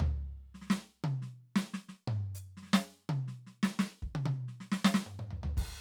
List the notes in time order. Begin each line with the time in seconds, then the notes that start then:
0.00 kick, floor tom
0.54 snare
0.61 snare
0.67 snare
0.70 snare
1.04 high tom
1.22 snare
1.56 snare
1.74 snare
1.89 snare
2.07 mid tom
2.35 hi-hat pedal
2.57 snare
2.62 snare
2.67 snare
2.73 snare
3.09 high tom
3.28 snare
3.47 snare
3.63 snare
3.79 snare
4.02 kick
4.15 high tom
4.26 high tom
4.48 snare
4.60 snare
4.72 snare
4.84 snare
4.94 snare
5.06 mid tom
5.19 mid tom
5.31 floor tom
5.43 floor tom
5.57 kick, crash